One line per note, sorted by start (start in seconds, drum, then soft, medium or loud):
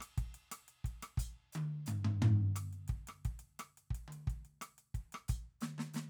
0.01 cross-stick medium
0.01 closed hi-hat medium
0.18 kick medium
0.18 closed hi-hat soft
0.35 closed hi-hat soft
0.52 cross-stick medium
0.52 closed hi-hat medium
0.68 closed hi-hat soft
0.85 kick soft
0.85 closed hi-hat soft
1.03 cross-stick medium
1.03 closed hi-hat medium
1.18 closed hi-hat medium
1.18 kick medium
1.53 hi-hat pedal soft
1.53 high tom medium
1.87 floor tom medium
1.87 hi-hat pedal medium
2.05 floor tom loud
2.22 floor tom loud
2.56 cross-stick medium
2.56 closed hi-hat medium
2.73 closed hi-hat soft
2.88 kick soft
2.88 closed hi-hat soft
3.08 cross-stick medium
3.08 closed hi-hat soft
3.25 kick soft
3.25 closed hi-hat soft
3.40 closed hi-hat soft
3.60 cross-stick medium
3.60 closed hi-hat medium
3.78 closed hi-hat soft
3.91 kick soft
3.95 closed hi-hat soft
4.08 high tom soft
4.13 closed hi-hat soft
4.28 kick soft
4.28 closed hi-hat soft
4.45 closed hi-hat soft
4.62 cross-stick medium
4.62 closed hi-hat medium
4.78 closed hi-hat soft
4.95 kick soft
4.95 closed hi-hat soft
5.13 cross-stick medium
5.13 closed hi-hat soft
5.29 closed hi-hat medium
5.29 kick medium
5.61 snare medium
5.61 hi-hat pedal medium
5.61 high tom medium
5.78 snare medium
5.78 high tom medium
5.94 snare medium
5.94 hi-hat pedal medium
5.94 high tom medium